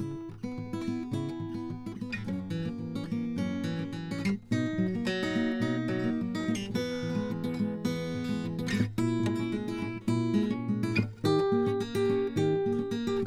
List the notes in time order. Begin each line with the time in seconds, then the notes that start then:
0.01 C#3 E4
0.45 B3
0.73 E4
0.89 B3
1.12 C#3 E4
1.55 B3
1.92 E4
2.02 B3
2.13 E2 G3
2.26 F#2 A#3 C#4
2.51 E3
2.66 A#3
2.80 E3
2.96 C#4
3.05 C#4
3.13 A#3
3.38 F#2 C#4
3.64 E3
3.93 E3
4.52 B2 D#4
4.79 F#3
4.87 D#4
4.96 A#3
5.08 F#3
5.23 D#4
5.37 A#3
5.61 B2 D#4
5.89 F#3
6.05 A#3
6.22 F#3
6.35 D#4
6.50 A#3
6.57 G3
6.72 E2 E3 B3
7.00 B3
7.04 E3
7.16 A#3
7.31 E3
7.44 A#3 B3
7.55 B3
7.85 E2 B3
8.16 E3
8.25 B3
8.30 B3
8.45 E3
8.59 B3
8.68 D3 B3
8.74 G#3
8.98 A#2 E4
9.27 G#3
9.36 E4
9.40 C#4
9.53 G#3
9.69 E4
9.83 C#4
10.08 A#2 G#3 D4 E4
10.34 G#3
10.44 E4
10.52 C#4
10.69 G#3
11.24 D#3 G4
11.53 A#3
11.67 C#4
11.81 A#3
11.95 G4
12.11 C#4
12.37 D#3 G4
12.67 A#3
12.73 G4
12.80 C#4
12.92 A#3
13.08 G4